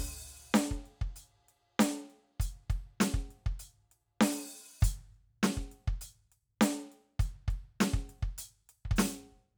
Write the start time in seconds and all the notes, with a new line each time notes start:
0.48 kick
0.54 closed hi-hat, snare, hi-hat pedal
0.71 kick
0.86 closed hi-hat
1.01 kick
1.16 closed hi-hat
1.49 closed hi-hat
1.79 closed hi-hat, snare
2.10 closed hi-hat
2.40 closed hi-hat, kick
2.70 kick, closed hi-hat
3.00 closed hi-hat, snare
3.14 kick
3.31 closed hi-hat
3.46 kick
3.59 closed hi-hat
3.91 closed hi-hat
4.21 open hi-hat, snare
4.81 closed hi-hat, kick, hi-hat pedal
5.14 closed hi-hat
5.43 closed hi-hat, snare
5.57 kick
5.72 closed hi-hat
5.88 kick
6.01 closed hi-hat
6.32 closed hi-hat
6.61 closed hi-hat, snare
6.92 closed hi-hat
7.19 closed hi-hat, kick
7.48 kick, closed hi-hat
7.80 closed hi-hat, snare
7.94 kick
8.09 closed hi-hat
8.23 kick, crash
8.38 closed hi-hat
8.69 closed hi-hat
8.85 kick
8.91 kick
8.96 open hi-hat, snare, hi-hat pedal
9.32 kick